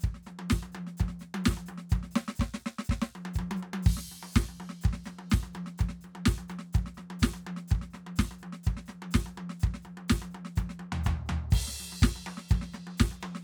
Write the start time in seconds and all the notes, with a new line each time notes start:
0.01 kick, hi-hat pedal, high tom
0.15 snare
0.24 snare, hi-hat pedal, high tom
0.40 high tom
0.50 kick, snare, hi-hat pedal
0.63 high tom
0.73 hi-hat pedal, high tom
0.87 snare
0.98 kick, hi-hat pedal, high tom
1.09 snare
1.20 snare, hi-hat pedal
1.35 high tom
1.45 kick, snare, hi-hat pedal
1.52 snare
1.58 high tom
1.67 hi-hat pedal, high tom
1.78 snare
1.90 kick, hi-hat pedal, high tom
2.04 snare
2.12 hi-hat pedal
2.16 snare
2.29 snare
2.36 hi-hat pedal
2.40 kick, snare
2.54 snare
2.59 hi-hat pedal
2.67 snare
2.79 snare
2.85 hi-hat pedal
2.90 kick, snare
3.02 snare
3.16 high tom
3.34 kick, hi-hat pedal
3.39 high tom
3.52 high tom
3.57 hi-hat pedal
3.63 high tom
3.74 high tom
3.83 kick, hi-hat pedal, crash
3.98 snare
4.06 hi-hat pedal
4.12 high tom
4.23 high tom
4.33 kick, snare, hi-hat pedal
4.43 snare
4.49 high tom
4.56 hi-hat pedal
4.61 high tom
4.70 snare
4.82 kick, hi-hat pedal, high tom
4.94 snare
5.04 snare, hi-hat pedal, high tom
5.19 high tom
5.31 kick, snare, hi-hat pedal
5.44 high tom
5.54 hi-hat pedal, high tom
5.67 snare
5.79 kick, hi-hat pedal, high tom
5.89 snare
6.02 hi-hat pedal, high tom
6.16 high tom
6.26 kick, snare, hi-hat pedal
6.39 high tom
6.49 hi-hat pedal, high tom
6.59 snare
6.73 kick, hi-hat pedal, high tom
6.87 snare
6.95 snare, hi-hat pedal, high tom
7.11 high tom
7.20 kick, snare, hi-hat pedal
7.34 high tom
7.42 hi-hat pedal
7.47 high tom
7.57 snare
7.68 kick, hi-hat pedal, high tom
7.82 snare
7.91 snare, hi-hat pedal
7.95 high tom
8.07 high tom
8.17 kick, snare, hi-hat pedal
8.25 cross-stick
8.32 high tom
8.39 hi-hat pedal
8.44 high tom
8.53 snare
8.64 kick, hi-hat pedal, high tom
8.78 snare
8.86 snare, hi-hat pedal, high tom
9.03 high tom
9.12 snare, hi-hat pedal
9.16 kick
9.27 high tom
9.34 hi-hat pedal, high tom
9.50 snare
9.60 kick, hi-hat pedal, high tom
9.75 snare
9.83 hi-hat pedal, high tom
9.98 high tom
10.09 kick, snare, hi-hat pedal
10.22 high tom
10.31 hi-hat pedal, high tom
10.46 snare
10.56 kick, hi-hat pedal, high tom
10.70 snare
10.80 high tom
10.93 floor tom
11.04 kick, floor tom, hi-hat pedal
11.26 floor tom, hi-hat pedal
11.51 kick, hi-hat pedal, crash
11.68 snare
11.74 hi-hat pedal
11.80 high tom
11.93 high tom
12.00 kick, snare, hi-hat pedal
12.16 high tom
12.23 hi-hat pedal, high tom
12.38 snare
12.49 kick, hi-hat pedal, high tom
12.62 snare
12.72 snare, hi-hat pedal, high tom
12.88 high tom
12.98 kick, snare, hi-hat pedal
13.12 high tom
13.21 hi-hat pedal, high tom
13.36 snare